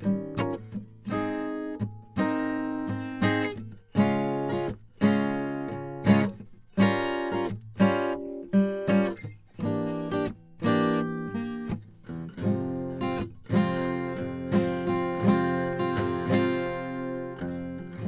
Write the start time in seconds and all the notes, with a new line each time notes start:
0.01 D#3 G3
0.09 C#4
0.39 C#4 F4 A#4
1.12 D#4 G#4
1.24 C4
2.18 C4 D#4 A#4
2.90 C4
3.23 C4 D#4 G#4
3.96 C#3 G#3 C#4
4.01 F4
4.50 C#4 F4 A#4
5.02 C#3 G#3 C#4
5.06 F4
5.69 C#3
6.06 C#3 G#3 C#4
6.10 F4 A#4
6.79 G3 C#4 F4
6.83 A#4
7.33 C#4 F4 A#4
7.79 G3 C#4
7.83 F4 A#4
8.54 G3 C#4
8.89 G3 C#4 F4 A#4
9.60 E3 A#3
9.65 D4 G4
10.13 A#3 D4 G4
10.61 E3 A#3
10.67 D4 G4
11.36 A#3
12.08 E2 C3
12.39 F2 C3
12.44 F3 C4
13.02 C4 F4
13.51 F2 C3 F3
13.56 C4 F4
14.18 F2 C3
14.53 F3 C4 F4
14.88 C4 F4
15.21 F2 C3
15.26 F3 C4 F4
15.80 C4 F4
15.98 F2 C3 F3
16.29 C3 F3
16.34 C4 F4
17.43 F2